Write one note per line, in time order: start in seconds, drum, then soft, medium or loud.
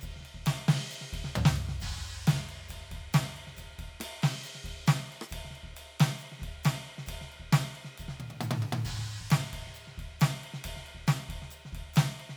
0.01 kick soft
0.01 percussion medium
0.01 ride medium
0.09 kick soft
0.16 snare soft
0.20 snare soft
0.25 ride medium
0.34 kick soft
0.40 kick soft
0.45 snare medium
0.45 ride loud
0.45 percussion soft
0.68 snare loud
0.68 ride loud
0.91 ride medium
0.91 percussion soft
1.01 snare soft
1.13 kick medium
1.13 ride medium
1.20 kick soft
1.24 snare medium
1.35 percussion soft
1.35 floor tom loud
1.45 snare loud
1.56 ride medium
1.69 snare medium
1.80 kick soft
1.80 percussion soft
1.80 crash loud
1.89 kick soft
1.89 snare soft
1.98 snare soft
2.27 snare loud
2.27 ride loud
2.27 percussion soft
2.49 ride medium
2.55 snare soft
2.69 kick soft
2.69 ride medium
2.69 percussion soft
2.77 snare soft
2.81 snare soft
2.85 snare soft
2.91 kick soft
2.91 ride medium
2.97 kick soft
3.13 snare loud
3.13 ride loud
3.13 percussion medium
3.23 snare soft
3.36 ride soft
3.47 snare soft
3.57 kick soft
3.57 ride medium
3.57 percussion soft
3.64 snare soft
3.67 snare soft
3.70 snare soft
3.73 snare soft
3.79 kick soft
3.79 ride medium
3.85 kick soft
4.00 cross-stick medium
4.00 ride loud
4.00 percussion soft
4.22 snare loud
4.22 ride loud
4.44 ride medium
4.44 percussion soft
4.55 snare soft
4.64 kick soft
4.64 ride medium
4.70 kick soft
4.86 snare loud
4.86 ride loud
4.86 percussion soft
4.96 snare soft
5.12 ride soft
5.21 cross-stick medium
5.29 kick soft
5.29 ride loud
5.29 percussion soft
5.38 kick soft
5.40 kick soft
5.45 snare soft
5.51 snare soft
5.55 ride soft
5.63 kick soft
5.76 ride medium
5.76 percussion soft
6.00 snare loud
6.00 ride loud
6.08 snare soft
6.18 ride soft
6.18 percussion soft
6.32 snare soft
6.39 kick soft
6.39 snare soft
6.43 ride medium
6.48 kick soft
6.63 snare loud
6.63 ride loud
6.63 percussion medium
6.89 ride soft
6.98 snare soft
7.06 kick soft
7.06 ride loud
7.06 percussion medium
7.14 kick soft
7.21 snare soft
7.32 ride soft
7.40 kick soft
7.52 snare loud
7.52 ride loud
7.52 percussion soft
7.75 ride soft
7.84 snare soft
7.98 kick soft
7.98 ride medium
7.98 percussion soft
8.05 kick soft
8.05 snare medium
8.20 high tom medium
8.30 high tom medium
8.41 high tom loud
8.41 percussion medium
8.51 high tom loud
8.62 high tom medium
8.72 high tom loud
8.85 kick soft
8.85 percussion medium
8.85 crash loud
8.92 kick soft
8.99 snare soft
9.04 snare soft
9.20 kick soft
9.30 snare loud
9.30 ride loud
9.30 percussion medium
9.53 kick soft
9.53 ride medium
9.59 kick soft
9.67 snare soft
9.74 ride soft
9.74 percussion medium
9.87 snare soft
9.97 kick soft
9.97 snare soft
9.97 ride medium
10.20 snare loud
10.20 ride loud
10.20 percussion medium
10.43 ride medium
10.53 snare medium
10.64 kick soft
10.64 ride loud
10.64 percussion medium
10.71 kick soft
10.76 snare soft
10.86 ride soft
10.95 kick soft
11.07 snare loud
11.07 ride loud
11.07 percussion medium
11.29 kick soft
11.29 ride medium
11.42 snare soft
11.51 ride soft
11.51 percussion medium
11.65 snare soft
11.73 kick soft
11.73 ride medium
11.80 kick soft
11.94 snare loud
11.94 ride loud
11.94 percussion medium
12.04 snare soft
12.20 ride soft
12.29 snare soft